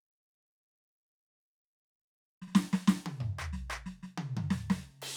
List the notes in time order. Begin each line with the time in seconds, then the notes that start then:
2.42 snare
2.48 snare
2.52 snare
2.55 snare
2.73 snare
2.88 snare
3.06 high tom
3.21 mid tom
3.39 percussion
3.53 snare
3.70 percussion
3.86 snare
4.03 snare
4.18 high tom
4.37 high tom
4.51 snare
4.70 snare
5.02 crash, ride